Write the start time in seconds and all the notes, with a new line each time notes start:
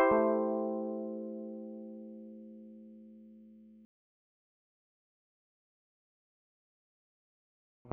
0.00 E4
0.12 A3